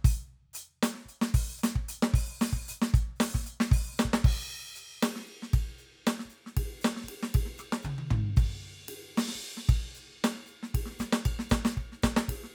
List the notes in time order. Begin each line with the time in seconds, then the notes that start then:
0.01 kick
0.04 open hi-hat, kick
0.53 closed hi-hat, hi-hat pedal
0.83 closed hi-hat, snare
0.94 snare
0.97 snare
1.00 snare
1.03 kick, snare
1.08 closed hi-hat
1.21 snare
1.34 open hi-hat, kick
1.58 hi-hat pedal
1.63 closed hi-hat, snare
1.75 kick
1.88 closed hi-hat
2.02 snare
2.14 open hi-hat, kick
2.41 open hi-hat, snare
2.53 kick
2.68 open hi-hat, kick, hi-hat pedal
2.82 snare
2.94 closed hi-hat, kick
3.16 hi-hat pedal
3.20 open hi-hat, snare
3.34 kick, snare
3.38 snare
3.43 closed hi-hat, snare, hi-hat pedal
3.60 snare
3.69 open hi-hat, kick, snare
3.93 snare
3.98 snare, hi-hat pedal
4.05 kick
4.13 snare
4.24 kick, crash
4.75 hi-hat pedal
5.02 snare, ride
5.16 snare
5.19 snare
5.27 ride
5.42 snare
5.53 kick, ride bell
5.78 hi-hat pedal, ride bell
6.07 snare, ride bell
6.19 snare
6.25 kick
6.30 hi-hat pedal, ride
6.46 snare
6.57 kick, ride
6.81 snare, hi-hat pedal, ride
6.96 snare
7.01 kick, snare
7.06 hi-hat pedal, ride
7.23 snare
7.34 kick, ride
7.45 snare
7.58 cross-stick, hi-hat pedal
7.72 snare
7.82 kick, hi-hat pedal, mid tom
7.98 high tom
8.07 kick, floor tom, hi-hat pedal
8.36 kick, hi-hat pedal, ride
8.87 hi-hat pedal, ride
9.17 snare, ride
9.28 snare
9.31 snare
9.34 kick, snare
9.40 hi-hat pedal, ride
9.57 snare
9.69 kick, ride bell
9.95 hi-hat pedal, ride
10.24 snare, ride bell
10.35 snare
10.38 snare
10.41 snare
10.45 snare, hi-hat pedal, ride
10.63 snare
10.74 kick, ride
10.86 snare
10.90 snare
10.96 kick, snare, hi-hat pedal
11.00 snare
11.12 snare
11.25 kick, ride bell
11.39 snare
11.49 kick, snare, hi-hat pedal
11.65 snare
11.77 kick, snare, ride
11.92 snare
12.02 kick, snare, hi-hat pedal
12.16 snare
12.26 kick, hi-hat pedal, ride
12.44 snare